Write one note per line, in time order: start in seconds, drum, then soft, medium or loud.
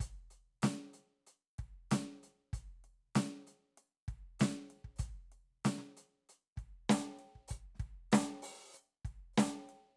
0.01 closed hi-hat medium
0.01 kick soft
0.31 closed hi-hat soft
0.63 closed hi-hat medium
0.63 snare medium
0.94 closed hi-hat soft
1.28 closed hi-hat soft
1.59 kick soft
1.59 closed hi-hat soft
1.92 closed hi-hat medium
1.92 snare medium
2.24 closed hi-hat soft
2.54 closed hi-hat medium
2.54 kick soft
2.85 closed hi-hat soft
3.16 closed hi-hat medium
3.16 snare loud
3.48 closed hi-hat soft
3.78 closed hi-hat soft
4.09 kick soft
4.09 closed hi-hat soft
4.40 closed hi-hat medium
4.40 snare loud
4.71 closed hi-hat soft
4.85 kick soft
4.97 closed hi-hat medium
4.97 kick soft
4.97 hi-hat pedal soft
5.06 kick soft
5.10 kick soft
5.33 closed hi-hat soft
5.65 closed hi-hat medium
5.65 snare medium
5.79 snare soft
5.98 closed hi-hat soft
6.30 closed hi-hat soft
6.57 kick soft
6.57 snare soft
6.57 closed hi-hat soft
6.90 open hi-hat medium
6.90 snare loud
6.90 hi-hat pedal soft
7.20 open hi-hat soft
7.36 kick soft
7.49 open hi-hat medium
7.49 kick soft
7.49 hi-hat pedal soft
7.76 snare soft
7.80 kick soft
7.80 closed hi-hat soft
8.13 closed hi-hat medium
8.13 snare loud
8.43 open hi-hat medium
8.74 hi-hat pedal medium
9.06 kick soft
9.06 closed hi-hat soft
9.34 hi-hat pedal soft
9.38 closed hi-hat medium
9.38 snare loud
9.70 closed hi-hat soft